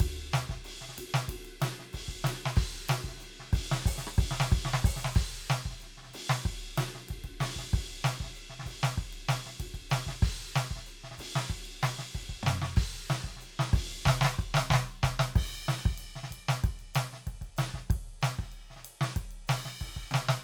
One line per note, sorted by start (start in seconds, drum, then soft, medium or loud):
0.01 kick loud
0.01 hi-hat pedal soft
0.01 ride loud
0.33 snare loud
0.33 hi-hat pedal medium
0.50 kick medium
0.50 snare medium
0.65 hi-hat pedal medium
0.65 ride loud
0.82 snare medium
0.89 snare soft
0.93 snare soft
0.97 kick soft
0.97 hi-hat pedal medium
0.97 ride loud
1.14 snare loud
1.29 kick medium
1.29 ride loud
1.45 ride medium
1.61 kick soft
1.61 snare loud
1.61 hi-hat pedal medium
1.61 ride loud
1.80 snare soft
1.93 kick medium
1.93 ride loud
2.09 kick medium
2.24 snare loud
2.24 hi-hat pedal medium
2.24 ride loud
2.46 snare loud
2.55 kick loud
2.55 hi-hat pedal soft
2.55 crash loud
2.86 kick soft
2.86 snare loud
2.86 hi-hat pedal medium
2.86 ride loud
3.04 kick medium
3.04 snare soft
3.17 snare soft
3.17 hi-hat pedal medium
3.17 ride medium
3.22 snare soft
3.40 snare soft
3.45 snare soft
3.53 kick loud
3.53 hi-hat pedal medium
3.53 ride loud
3.72 snare loud
3.86 open hi-hat loud
3.86 kick loud
3.98 snare medium
4.07 cross-stick medium
4.18 kick loud
4.18 ride loud
4.31 snare medium
4.40 snare loud
4.51 kick loud
4.51 hi-hat pedal soft
4.51 ride loud
4.65 snare loud
4.74 snare loud
4.85 open hi-hat loud
4.85 kick loud
4.97 snare medium
5.05 snare medium
5.15 kick loud
5.15 crash loud
5.49 snare loud
5.49 hi-hat pedal medium
5.49 ride medium
5.66 kick medium
5.71 snare soft
5.80 snare soft
5.80 hi-hat pedal medium
5.80 ride soft
5.98 snare soft
6.03 snare soft
6.05 snare soft
6.10 kick soft
6.10 hi-hat pedal medium
6.14 ride loud
6.30 snare loud
6.45 kick loud
6.45 ride medium
6.60 ride soft
6.77 snare loud
6.77 hi-hat pedal medium
6.77 ride loud
6.95 snare medium
7.09 kick medium
7.09 ride medium
7.24 kick medium
7.24 ride medium
7.40 snare loud
7.40 hi-hat pedal medium
7.40 ride loud
7.56 kick medium
7.56 snare medium
7.74 kick loud
7.74 ride loud
8.05 snare loud
8.05 hi-hat pedal medium
8.05 ride medium
8.20 kick medium
8.20 snare soft
8.35 hi-hat pedal medium
8.35 ride medium
8.50 snare medium
8.60 snare medium
8.63 kick medium
8.63 snare medium
8.63 hi-hat pedal medium
8.63 ride loud
8.83 snare loud
8.98 kick medium
8.98 ride medium
9.13 ride medium
9.28 snare loud
9.28 hi-hat pedal medium
9.28 ride loud
9.47 snare medium
9.60 kick medium
9.60 ride medium
9.74 kick medium
9.74 ride soft
9.90 snare loud
9.90 hi-hat pedal medium
9.90 ride loud
10.07 kick medium
10.07 snare medium
10.23 kick loud
10.23 crash loud
10.55 snare loud
10.55 hi-hat pedal medium
10.55 ride medium
10.71 kick medium
10.76 snare soft
10.87 hi-hat pedal medium
10.87 ride soft
11.04 snare medium
11.12 snare medium
11.18 kick soft
11.18 hi-hat pedal medium
11.18 ride loud
11.36 snare loud
11.50 kick medium
11.50 ride medium
11.66 ride medium
11.82 snare loud
11.82 hi-hat pedal medium
11.82 ride loud
11.99 snare medium
12.14 kick medium
12.14 ride medium
12.30 kick medium
12.43 snare loud
12.43 hi-hat pedal medium
12.43 mid tom loud
12.62 snare loud
12.77 kick loud
12.77 crash loud
13.09 snare loud
13.09 hi-hat pedal medium
13.09 ride soft
13.24 kick medium
13.24 snare soft
13.37 snare soft
13.41 hi-hat pedal medium
13.41 ride medium
13.60 snare loud
13.70 kick loud
13.70 snare soft
13.74 ride loud
14.06 kick loud
14.06 snare loud
14.06 hi-hat pedal soft
14.09 snare loud
14.21 snare loud
14.25 snare loud
14.39 kick loud
14.39 hi-hat pedal medium
14.55 snare loud
14.57 snare loud
14.71 kick medium
14.71 snare loud
14.74 snare loud
15.03 kick medium
15.03 snare loud
15.20 snare loud
15.36 kick loud
15.36 crash loud
15.69 snare loud
15.69 hi-hat pedal medium
15.86 kick loud
15.92 snare soft
15.98 hi-hat pedal medium
15.98 crash loud
16.16 snare medium
16.24 snare medium
16.30 kick soft
16.30 hi-hat pedal soft
16.30 crash loud
16.49 snare loud
16.64 kick loud
16.64 crash medium
16.80 crash soft
16.92 kick soft
16.92 snare loud
16.92 hi-hat pedal medium
16.92 crash loud
17.13 snare medium
17.27 kick medium
17.27 crash medium
17.42 kick medium
17.42 crash soft
17.57 snare loud
17.57 hi-hat pedal medium
17.57 crash loud
17.74 kick medium
17.74 snare medium
17.90 kick loud
17.90 crash loud
18.22 snare loud
18.22 hi-hat pedal medium
18.22 crash medium
18.39 kick medium
18.39 snare soft
18.52 hi-hat pedal soft
18.52 crash soft
18.71 snare soft
18.77 snare soft
18.82 kick soft
18.82 hi-hat pedal medium
18.82 crash loud
19.01 snare loud
19.16 kick medium
19.16 crash medium
19.31 crash soft
19.46 kick soft
19.46 snare loud
19.46 hi-hat pedal medium
19.46 crash loud
19.66 snare medium
19.81 kick medium
19.81 crash medium
19.97 kick medium
20.12 snare loud
20.12 hi-hat pedal medium
20.12 high tom loud
20.29 snare loud